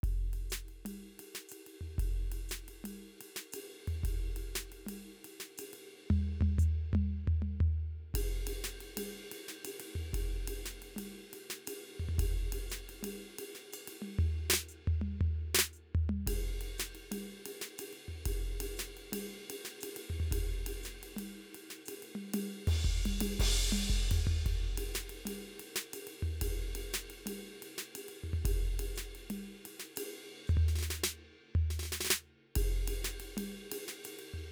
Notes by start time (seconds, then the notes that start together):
0.03 kick, ride
0.33 ride
0.50 snare, hi-hat pedal
0.68 ride
0.85 mid tom, ride
1.19 ride
1.35 snare
1.49 hi-hat pedal, ride
1.66 ride
1.81 floor tom
1.98 kick, ride
2.32 ride
2.49 snare, hi-hat pedal
2.68 ride
2.84 mid tom, ride
3.21 ride
3.36 snare
3.52 hi-hat pedal, ride
3.87 floor tom, ride
4.03 kick, ride
4.36 ride
4.55 snare, hi-hat pedal
4.72 ride
4.86 mid tom, ride
5.24 ride
5.40 snare
5.58 hi-hat pedal, ride
5.73 ride
6.10 floor tom, mid tom
6.41 floor tom, mid tom
6.58 floor tom, hi-hat pedal
6.93 floor tom, mid tom
7.27 floor tom
7.42 mid tom
7.60 floor tom
8.14 kick, ride
8.47 ride
8.64 snare, hi-hat pedal
8.80 ride
8.97 mid tom, ride
9.31 ride
9.48 snare
9.65 hi-hat pedal, ride
9.80 ride
9.95 floor tom
10.13 kick, ride
10.29 ride
10.47 ride
10.65 snare, hi-hat pedal
10.82 ride
10.96 mid tom, ride
11.33 ride
11.50 snare
11.67 hi-hat pedal, ride
11.99 floor tom
12.09 floor tom
12.18 kick, ride
12.52 ride
12.70 snare, hi-hat pedal
12.89 ride
13.03 mid tom, ride
13.38 ride
13.55 snare
13.72 hi-hat pedal, ride bell
13.87 ride
14.02 mid tom
14.19 floor tom
14.50 snare
14.53 snare
14.68 hi-hat pedal
14.87 floor tom
15.01 mid tom
15.21 floor tom
15.54 snare
15.59 snare
15.73 hi-hat pedal
15.95 floor tom
16.09 mid tom
16.27 kick, ride
16.61 ride
16.78 snare, hi-hat pedal
16.95 ride
17.11 mid tom, ride
17.46 ride
17.61 snare
17.78 hi-hat pedal, ride
17.93 ride
18.08 floor tom
18.25 kick, ride
18.60 ride
18.77 snare, hi-hat pedal
18.97 ride
19.12 mid tom, ride
19.50 ride
19.65 snare
19.81 hi-hat pedal, ride
19.96 ride
20.10 floor tom
20.20 floor tom
20.31 kick, ride
20.66 ride
20.83 snare, hi-hat pedal
21.03 ride
21.16 mid tom, ride
21.54 ride
21.70 snare
21.85 hi-hat pedal, ride
22.02 ride
22.15 mid tom
22.33 mid tom, ride
22.67 floor tom, ride
22.84 kick
23.05 mid tom, ride
23.20 mid tom, ride
23.39 kick, ride
23.72 mid tom, ride
23.90 kick
24.11 floor tom, ride
24.27 floor tom
24.46 kick, ride
24.77 ride
24.94 snare, hi-hat pedal
25.09 ride
25.25 mid tom, ride
25.59 ride
25.76 snare
25.93 hi-hat pedal, ride
26.07 ride
26.22 floor tom
26.41 kick, ride
26.58 ride
26.75 ride
26.92 snare, hi-hat pedal, ride
27.10 ride
27.26 mid tom, ride
27.62 ride
27.78 snare
27.95 hi-hat pedal, ride
28.08 ride
28.23 kick, floor tom
28.33 floor tom
28.45 kick, ride
28.79 ride
28.96 snare, hi-hat pedal
29.15 ride
29.30 mid tom, ride
29.65 ride
29.79 snare
29.96 hi-hat pedal, ride
30.15 ride
30.26 ride
30.47 floor tom, hi-hat pedal
30.57 floor tom
30.68 snare
30.75 snare
30.78 snare
30.81 snare
30.82 snare
30.90 snare
30.94 snare
31.03 snare, hi-hat pedal
31.55 floor tom
31.70 snare
31.79 snare
31.83 snare
31.85 snare
31.92 snare
31.94 snare
32.00 snare
32.04 snare, hi-hat pedal
32.06 snare
32.10 snare
32.55 kick, ride
32.88 ride
33.04 snare, hi-hat pedal
33.20 ride
33.37 mid tom, ride
33.72 ride
33.88 snare
34.04 hi-hat pedal, ride
34.19 ride
34.33 floor tom